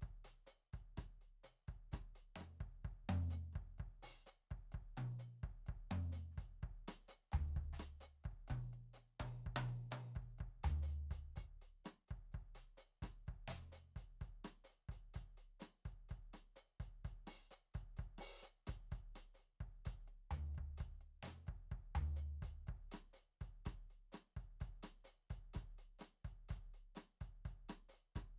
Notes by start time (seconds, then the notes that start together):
0.01 closed hi-hat, kick
0.25 closed hi-hat, snare
0.47 closed hi-hat, hi-hat pedal
0.73 closed hi-hat, kick
0.97 closed hi-hat, kick, cross-stick, snare
1.04 kick
1.21 closed hi-hat
1.44 snare, hi-hat pedal
1.68 closed hi-hat, kick
1.92 open hi-hat, kick, cross-stick, snare
2.15 closed hi-hat
2.36 cross-stick, hi-hat pedal, mid tom
2.41 cross-stick
2.60 kick, closed hi-hat
2.85 closed hi-hat, kick
3.09 closed hi-hat, mid tom
3.30 closed hi-hat, hi-hat pedal
3.53 kick, cross-stick, closed hi-hat
3.78 kick, closed hi-hat
4.03 open hi-hat, snare
4.26 hi-hat pedal
4.51 kick, closed hi-hat
4.72 kick, closed hi-hat
4.97 closed hi-hat, high tom
5.19 closed hi-hat, hi-hat pedal
5.43 kick, closed hi-hat
5.49 kick
5.66 kick, closed hi-hat
5.91 closed hi-hat, mid tom
6.12 closed hi-hat, hi-hat pedal
6.31 snare
6.38 closed hi-hat, kick
6.63 kick, closed hi-hat
6.88 closed hi-hat, cross-stick, snare
7.08 closed hi-hat, hi-hat pedal
7.32 kick, closed hi-hat, floor tom
7.56 kick, closed hi-hat
7.73 snare
7.79 closed hi-hat, cross-stick
8.01 closed hi-hat, hi-hat pedal
8.24 kick, closed hi-hat
8.31 kick
8.48 kick, closed hi-hat, high tom
8.73 closed hi-hat
8.94 closed hi-hat, hi-hat pedal
9.20 kick, closed hi-hat, high tom
9.46 kick
9.56 high tom
9.69 closed hi-hat
9.91 hi-hat pedal, open hi-hat, high tom
10.15 kick, closed hi-hat
10.22 kick
10.39 kick, closed hi-hat
10.64 closed hi-hat, floor tom
10.82 hi-hat pedal
10.88 closed hi-hat
11.11 closed hi-hat, kick
11.36 open hi-hat, kick
11.62 closed hi-hat
11.84 open hi-hat, cross-stick, snare, hi-hat pedal
12.08 closed hi-hat, kick
12.32 open hi-hat, kick
12.55 closed hi-hat, snare
12.77 closed hi-hat, hi-hat pedal
13.02 closed hi-hat, kick, cross-stick, snare
13.27 closed hi-hat, kick
13.34 kick
13.48 closed hi-hat, snare, mid tom
13.72 closed hi-hat, hi-hat pedal
13.96 closed hi-hat, kick
14.21 closed hi-hat, kick
14.44 closed hi-hat, cross-stick, snare
14.64 hi-hat pedal
14.70 closed hi-hat
14.89 closed hi-hat, kick
15.14 closed hi-hat, kick, cross-stick
15.21 kick
15.37 closed hi-hat
15.60 closed hi-hat, cross-stick, snare, hi-hat pedal
15.85 closed hi-hat, kick
16.09 closed hi-hat, kick
16.33 closed hi-hat, cross-stick
16.56 hi-hat pedal
16.80 closed hi-hat, kick
17.05 closed hi-hat, kick
17.27 open hi-hat, cross-stick
17.51 hi-hat pedal
17.74 closed hi-hat, kick
17.81 kick
17.97 closed hi-hat, kick
18.18 open hi-hat, cross-stick
18.43 closed hi-hat, hi-hat pedal
18.67 closed hi-hat, kick, cross-stick
18.75 kick
18.92 closed hi-hat, kick
19.15 closed hi-hat, cross-stick, snare
19.34 hi-hat pedal
19.39 closed hi-hat
19.60 kick, closed hi-hat
19.85 closed hi-hat, kick, snare
20.08 closed hi-hat
20.31 floor tom, hi-hat pedal, open hi-hat
20.55 kick, closed hi-hat
20.78 closed hi-hat, kick
21.01 closed hi-hat
21.23 closed hi-hat, snare, hi-hat pedal, mid tom
21.28 cross-stick
21.47 kick, closed hi-hat
21.71 kick, closed hi-hat
21.95 closed hi-hat, floor tom
22.16 closed hi-hat, hi-hat pedal
22.42 closed hi-hat, kick
22.48 kick
22.67 kick, closed hi-hat
22.92 closed hi-hat, cross-stick, snare
23.13 closed hi-hat, hi-hat pedal
23.41 closed hi-hat, kick
23.65 closed hi-hat, kick, cross-stick
23.90 closed hi-hat
24.12 closed hi-hat, cross-stick, hi-hat pedal
24.37 closed hi-hat, kick
24.60 closed hi-hat, kick
24.83 closed hi-hat, cross-stick
25.04 closed hi-hat, hi-hat pedal
25.30 closed hi-hat, kick
25.54 closed hi-hat, kick, cross-stick
25.62 kick
25.78 closed hi-hat
25.99 closed hi-hat, cross-stick, snare, hi-hat pedal
26.25 closed hi-hat, kick
26.49 closed hi-hat, kick, snare
26.56 kick
26.74 closed hi-hat
26.95 closed hi-hat, cross-stick, hi-hat pedal
27.21 closed hi-hat, kick
27.45 closed hi-hat, kick
27.51 kick
27.69 closed hi-hat, cross-stick, snare
27.89 hi-hat pedal
27.93 closed hi-hat
28.15 closed hi-hat, kick, cross-stick, snare
28.22 kick